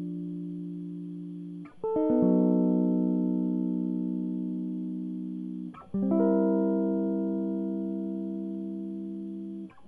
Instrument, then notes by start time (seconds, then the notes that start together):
electric guitar
1.84 A4
1.97 D#4
2.11 B3
2.23 F#3
5.95 G3
6.03 C4
6.12 E4
6.20 A#4